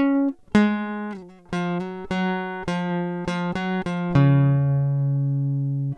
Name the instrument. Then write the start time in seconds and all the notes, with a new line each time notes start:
acoustic guitar
0.00 C#4
0.56 G#3
1.13 G3
1.54 F3
1.82 F#3
2.12 F#3
2.69 F3
3.29 F3
3.57 F#3
3.88 F3
4.17 C#3